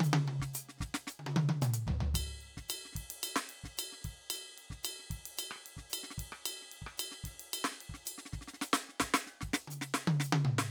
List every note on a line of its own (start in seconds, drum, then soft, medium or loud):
0.01 hi-hat pedal medium
0.01 high tom loud
0.14 high tom loud
0.28 high tom medium
0.41 kick soft
0.41 snare medium
0.54 closed hi-hat loud
0.54 hi-hat pedal medium
0.69 snare soft
0.78 kick soft
0.78 snare soft
0.82 snare medium
0.95 snare loud
1.08 snare medium
1.08 hi-hat pedal medium
1.20 high tom medium
1.27 high tom medium
1.37 high tom loud
1.50 high tom loud
1.62 hi-hat pedal loud
1.62 mid tom loud
1.74 closed hi-hat medium
1.87 kick soft
1.87 floor tom loud
1.94 kick soft
2.01 floor tom loud
2.15 kick medium
2.15 hi-hat pedal medium
2.15 ride bell loud
2.28 kick soft
2.41 ride soft
2.58 kick soft
2.58 snare soft
2.69 hi-hat pedal medium
2.69 ride bell loud
2.86 snare soft
2.93 kick soft
2.93 snare soft
2.97 ride medium
3.01 kick soft
3.11 ride medium
3.24 hi-hat pedal medium
3.24 ride bell loud
3.36 snare loud
3.50 ride medium
3.64 kick soft
3.64 snare soft
3.78 hi-hat pedal medium
3.78 ride bell loud
3.93 snare soft
4.02 kick soft
4.02 snare soft
4.02 ride medium
4.08 snare soft
4.11 snare soft
4.14 snare soft
4.17 snare soft
4.31 hi-hat pedal medium
4.31 ride bell loud
4.58 ride soft
4.71 kick soft
4.71 snare soft
4.84 hi-hat pedal medium
4.84 ride bell loud
5.00 snare soft
5.10 kick soft
5.10 snare soft
5.10 ride medium
5.26 ride medium
5.38 hi-hat pedal medium
5.38 ride bell loud
5.52 cross-stick medium
5.57 cross-stick soft
5.67 ride medium
5.77 kick soft
5.77 snare soft
5.90 hi-hat pedal medium
5.90 ride bell loud
6.04 snare soft
6.11 snare soft
6.19 kick soft
6.19 ride medium
6.33 cross-stick medium
6.46 hi-hat pedal medium
6.46 ride bell loud
6.63 snare soft
6.72 ride soft
6.83 kick soft
6.87 cross-stick medium
6.98 hi-hat pedal medium
6.98 ride bell loud
7.12 snare soft
7.25 kick soft
7.25 snare soft
7.25 ride medium
7.32 cross-stick soft
7.32 snare soft
7.40 ride medium
7.54 hi-hat pedal medium
7.54 ride bell loud
7.65 snare medium
7.72 snare soft
7.81 ride soft
7.90 kick soft
7.95 snare soft
8.06 hi-hat pedal medium
8.06 ride bell medium
8.19 snare soft
8.26 snare soft
8.33 kick soft
8.33 snare soft
8.40 kick soft
8.40 snare soft
8.48 snare soft
8.54 snare soft
8.62 snare loud
8.62 hi-hat pedal medium
8.74 snare loud
8.90 snare soft
9.01 kick soft
9.01 snare loud
9.15 snare loud
9.15 hi-hat pedal medium
9.27 snare soft
9.42 kick soft
9.42 snare medium
9.50 kick soft
9.54 snare loud
9.68 hi-hat pedal medium
9.68 high tom medium
9.82 snare medium
9.95 snare loud
10.08 high tom loud
10.21 snare medium
10.21 hi-hat pedal medium
10.33 high tom loud
10.46 mid tom loud
10.59 snare loud